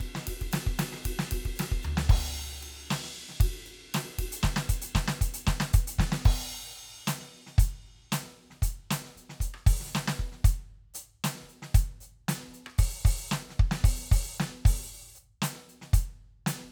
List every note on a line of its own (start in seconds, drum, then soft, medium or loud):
0.01 kick soft
0.01 ride medium
0.16 snare loud
0.23 hi-hat pedal soft
0.28 kick soft
0.28 ride loud
0.42 kick medium
0.42 ride medium
0.52 snare loud
0.52 hi-hat pedal medium
0.52 ride loud
0.67 kick medium
0.79 snare loud
0.79 hi-hat pedal medium
0.79 ride loud
0.93 snare medium
0.97 snare medium
1.02 snare soft
1.02 hi-hat pedal medium
1.06 kick medium
1.06 ride loud
1.20 snare loud
1.27 hi-hat pedal soft
1.32 kick medium
1.32 ride loud
1.46 kick medium
1.46 ride medium
1.56 hi-hat pedal medium
1.56 ride loud
1.60 snare loud
1.72 kick medium
1.83 floor tom loud
1.83 hi-hat pedal medium
1.98 snare loud
2.09 kick loud
2.09 hi-hat pedal soft
2.09 crash loud
2.61 hi-hat pedal soft
2.61 ride medium
2.91 snare loud
2.91 ride loud
3.04 snare medium
3.13 hi-hat pedal soft
3.13 ride soft
3.30 snare medium
3.41 kick loud
3.41 ride loud
3.66 hi-hat pedal medium
3.66 ride soft
3.95 snare loud
3.95 ride loud
4.05 snare soft
4.08 snare soft
4.10 snare soft
4.19 kick medium
4.19 ride loud
4.33 closed hi-hat loud
4.44 kick medium
4.44 snare loud
4.57 snare loud
4.70 closed hi-hat loud
4.70 kick medium
4.83 closed hi-hat loud
4.96 kick medium
4.96 snare loud
5.09 snare loud
5.22 closed hi-hat loud
5.22 kick medium
5.35 closed hi-hat loud
5.48 kick medium
5.48 snare loud
5.61 snare loud
5.74 closed hi-hat loud
5.74 kick loud
5.88 closed hi-hat loud
5.99 kick medium
5.99 snare loud
6.13 snare loud
6.23 kick soft
6.23 crash loud
6.26 kick loud
7.08 closed hi-hat loud
7.08 snare loud
7.21 snare soft
7.23 snare soft
7.47 snare soft
7.59 closed hi-hat loud
7.59 kick loud
7.87 closed hi-hat soft
8.13 closed hi-hat loud
8.13 snare loud
8.25 snare soft
8.27 snare soft
8.51 snare soft
8.63 closed hi-hat loud
8.63 kick medium
8.91 closed hi-hat loud
8.91 snare loud
9.05 snare soft
9.08 snare soft
9.14 closed hi-hat soft
9.14 kick soft
9.14 snare soft
9.30 snare medium
9.41 closed hi-hat loud
9.41 kick medium
9.55 cross-stick medium
9.67 open hi-hat loud
9.67 kick loud
9.81 snare soft
9.86 snare soft
9.89 snare soft
9.94 snare loud
9.94 hi-hat pedal medium
10.08 snare loud
10.19 kick medium
10.19 snare soft
10.33 snare soft
10.45 open hi-hat loud
10.45 kick loud
10.95 closed hi-hat loud
10.95 hi-hat pedal medium
11.25 closed hi-hat loud
11.25 snare loud
11.36 snare soft
11.40 snare soft
11.43 kick soft
11.43 snare soft
11.48 closed hi-hat soft
11.48 snare soft
11.63 snare medium
11.75 closed hi-hat loud
11.75 kick loud
12.01 closed hi-hat soft
12.01 hi-hat pedal medium
12.29 closed hi-hat loud
12.29 snare loud
12.42 snare soft
12.45 snare soft
12.48 kick soft
12.48 snare soft
12.51 closed hi-hat soft
12.51 snare soft
12.67 cross-stick medium
12.79 open hi-hat loud
12.79 kick loud
13.06 open hi-hat loud
13.06 kick loud
13.32 snare loud
13.32 hi-hat pedal soft
13.51 snare medium
13.60 kick loud
13.72 snare loud
13.85 open hi-hat loud
13.85 kick loud
14.12 open hi-hat loud
14.12 kick loud
14.37 kick soft
14.37 snare loud
14.37 hi-hat pedal medium
14.66 open hi-hat loud
14.66 kick loud
15.16 hi-hat pedal medium
15.43 closed hi-hat loud
15.43 snare loud
15.55 snare soft
15.57 snare soft
15.70 closed hi-hat soft
15.82 snare medium
15.94 closed hi-hat loud
15.94 kick loud
16.47 closed hi-hat loud
16.47 snare loud
16.60 snare soft
16.65 kick soft